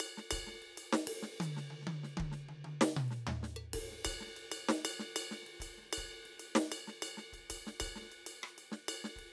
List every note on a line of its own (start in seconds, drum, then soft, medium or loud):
0.00 ride bell loud
0.17 snare soft
0.31 kick soft
0.31 ride bell loud
0.47 snare soft
0.53 snare soft
0.62 ride soft
0.77 ride bell medium
0.92 snare medium
1.07 ride loud
1.22 snare soft
1.40 hi-hat pedal medium
1.40 high tom loud
1.57 snare soft
1.70 high tom medium
1.82 snare soft
1.87 high tom medium
2.03 snare soft
2.17 kick soft
2.17 high tom loud
2.30 kick soft
2.30 snare soft
2.48 high tom medium
2.64 high tom medium
2.81 snare loud
2.96 mid tom loud
3.08 snare soft
3.08 ride soft
3.27 floor tom medium
3.43 snare soft
3.56 percussion medium
3.73 kick soft
3.73 ride loud
3.81 kick soft
3.91 snare soft
4.05 kick soft
4.05 ride bell loud
4.12 kick soft
4.20 snare soft
4.26 snare soft
4.36 ride bell soft
4.52 ride bell loud
4.69 snare medium
4.85 ride bell loud
4.99 snare soft
5.16 hi-hat pedal medium
5.16 ride bell loud
5.31 snare soft
5.42 snare soft
5.46 ride soft
5.60 kick soft
5.60 hi-hat pedal soft
5.60 ride bell medium
5.77 snare soft
5.81 snare soft
5.85 snare soft
5.88 snare soft
5.90 snare soft
5.90 ride bell loud
5.97 kick soft
6.25 ride soft
6.39 ride bell medium
6.55 snare loud
6.72 ride bell loud
6.87 snare soft
7.02 hi-hat pedal medium
7.02 ride bell loud
7.17 snare soft
7.33 kick soft
7.33 ride bell soft
7.50 kick soft
7.50 ride bell loud
7.67 snare soft
7.80 kick soft
7.80 ride bell loud
7.86 kick soft
7.96 snare soft
8.01 snare soft
8.05 snare soft
8.08 snare soft
8.08 ride bell soft
8.26 ride bell medium
8.43 cross-stick medium
8.47 hi-hat pedal soft
8.58 ride bell medium
8.71 snare soft
8.88 hi-hat pedal medium
8.88 ride bell loud
9.04 snare soft
9.16 kick soft
9.16 ride soft